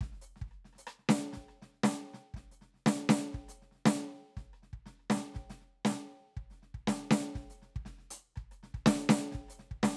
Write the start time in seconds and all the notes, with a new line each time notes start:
0.01 kick, cross-stick, snare
0.11 snare
0.21 hi-hat pedal
0.36 snare
0.41 kick
0.47 snare
0.51 cross-stick
0.64 snare
0.73 cross-stick, snare
0.78 hi-hat pedal
0.87 cross-stick
0.99 snare
1.09 snare
1.33 snare
1.37 kick
1.48 cross-stick, snare
1.62 snare
1.67 snare
1.73 snare
1.83 snare
1.98 snare
2.14 snare
2.34 kick, snare
2.51 snare, hi-hat pedal, crash
2.61 snare
2.73 snare
2.75 snare
2.86 snare
2.99 snare
3.09 snare
3.13 cross-stick
3.20 snare
3.32 kick, snare
3.36 snare
3.48 cross-stick, snare, hi-hat pedal
3.62 snare
3.71 snare
3.74 snare
3.86 cross-stick, snare
4.00 cross-stick, snare
4.14 snare
4.23 snare
4.37 kick, snare
4.53 cross-stick
4.62 snare
4.73 kick
4.86 snare
4.99 cross-stick
5.10 snare
5.16 snare
5.34 kick, snare
5.50 snare, hi-hat pedal
5.61 snare
5.85 snare
5.90 snare
6.00 snare
6.25 snare
6.33 snare
6.36 kick, snare
6.50 snare, hi-hat pedal
6.62 snare
6.74 kick, snare
6.87 snare
6.99 snare
7.11 snare
7.35 kick, snare
7.40 snare
7.50 snare, hi-hat pedal
7.62 snare
7.74 kick, snare
7.85 snare
7.97 snare
8.11 closed hi-hat
8.36 kick, cross-stick
8.51 cross-stick, snare, hi-hat pedal
8.63 snare
8.74 kick, cross-stick, snare
8.86 snare
8.90 cross-stick
8.98 snare, hi-hat pedal
9.09 snare
9.13 cross-stick
9.31 kick, snare
9.48 cross-stick, snare, hi-hat pedal
9.59 snare
9.70 kick, snare
9.83 snare
9.87 cross-stick